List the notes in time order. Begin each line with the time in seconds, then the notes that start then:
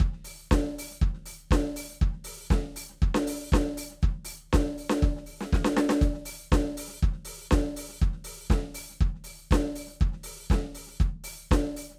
0.01 kick, closed hi-hat
0.13 snare
0.25 open hi-hat
0.48 hi-hat pedal
0.52 kick, snare, closed hi-hat
0.79 open hi-hat
0.91 snare
0.98 hi-hat pedal
1.02 kick, closed hi-hat
1.14 snare
1.27 open hi-hat
1.48 kick, hi-hat pedal
1.53 snare, closed hi-hat
1.68 snare
1.77 open hi-hat
1.89 snare
1.92 snare
1.98 hi-hat pedal
2.02 kick, closed hi-hat
2.13 snare
2.25 open hi-hat
2.48 kick, snare, closed hi-hat, hi-hat pedal
2.67 snare
2.72 snare
2.77 open hi-hat
2.90 snare
2.99 hi-hat pedal
3.03 kick, closed hi-hat
3.15 snare
3.28 open hi-hat
3.51 kick, snare, hi-hat pedal
3.55 closed hi-hat
3.78 open hi-hat
3.91 snare
3.99 snare, hi-hat pedal
4.03 kick, closed hi-hat
4.14 snare
4.26 open hi-hat
4.50 closed hi-hat, kick, snare, hi-hat pedal
4.61 snare
4.79 open hi-hat
4.91 snare
5.00 kick, hi-hat pedal
5.05 closed hi-hat
5.17 snare
5.27 open hi-hat
5.42 snare
5.49 hi-hat pedal
5.54 kick, snare
5.66 snare
5.78 snare
5.90 snare
5.98 hi-hat pedal
6.02 closed hi-hat, kick
6.14 snare
6.26 open hi-hat
6.48 hi-hat pedal
6.53 kick, snare, closed hi-hat
6.78 open hi-hat
6.89 snare
6.99 hi-hat pedal
7.03 kick, closed hi-hat
7.13 snare
7.26 open hi-hat
7.46 hi-hat pedal
7.52 kick, snare, closed hi-hat
7.59 snare
7.77 open hi-hat
7.89 snare
7.99 kick, closed hi-hat, hi-hat pedal
8.13 snare
8.25 open hi-hat
8.48 kick, snare, closed hi-hat, hi-hat pedal
8.59 snare
8.75 open hi-hat
8.91 snare
8.98 kick, closed hi-hat, hi-hat pedal
9.15 snare
9.25 open hi-hat
9.48 closed hi-hat, kick, hi-hat pedal
9.53 snare
9.69 snare
9.76 open hi-hat
9.88 snare
9.96 hi-hat pedal
10.01 kick, closed hi-hat
10.13 snare
10.24 open hi-hat
10.48 kick, hi-hat pedal
10.52 snare, closed hi-hat
10.59 snare
10.76 open hi-hat
10.88 snare
10.98 kick, closed hi-hat, hi-hat pedal
11.25 open hi-hat
11.49 kick, snare, hi-hat pedal
11.54 closed hi-hat
11.77 open hi-hat
11.91 snare